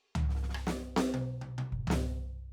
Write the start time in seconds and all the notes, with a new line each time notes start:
0.15 floor tom
0.29 snare
0.35 snare
0.43 snare
0.49 snare
0.54 cross-stick
0.67 snare
0.96 snare
1.14 high tom
1.41 high tom
1.58 high tom
1.72 kick
1.87 snare, floor tom